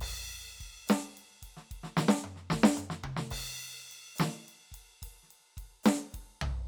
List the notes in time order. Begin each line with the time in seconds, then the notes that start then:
0.01 kick, crash
0.08 kick
0.41 snare
0.46 snare
0.49 snare
0.52 snare
0.55 snare
0.61 kick, ride
0.87 snare, hi-hat pedal, ride
1.18 ride
1.43 kick, ride
1.57 snare
1.71 kick, ride
1.84 snare
1.97 snare, hi-hat pedal
2.09 snare
2.22 hi-hat pedal, mid tom
2.36 snare
2.51 kick, snare
2.64 snare
2.77 hi-hat pedal, mid tom
2.90 snare
3.04 kick, high tom
3.17 snare
3.31 kick, crash
3.38 kick
3.92 ride
4.16 hi-hat pedal, ride
4.20 snare
4.30 snare
4.43 hi-hat pedal
4.49 ride
4.72 kick, ride
5.02 kick, ride
5.08 kick
5.23 snare
5.28 snare, ride
5.40 snare
5.57 kick, cross-stick, ride
5.65 kick
5.84 snare, hi-hat pedal, ride
5.95 snare
6.11 kick, hi-hat pedal, ride
6.22 snare
6.42 kick, floor tom